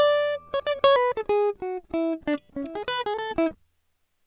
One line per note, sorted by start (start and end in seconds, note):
0.00 0.41 D5
0.55 0.62 C#5
0.67 0.78 D5
0.84 0.96 C#5
0.96 1.16 B4
1.18 1.25 A4
1.30 1.56 G#4
1.63 1.82 F#4
1.95 2.25 E4
2.28 2.40 D4
2.57 2.71 C#4
2.64 2.81 E4
2.76 2.88 G#4
2.88 3.05 B4
2.88 3.06 B4
3.07 3.18 G#4
3.19 3.37 A4
3.19 3.36 A4
3.39 3.54 E4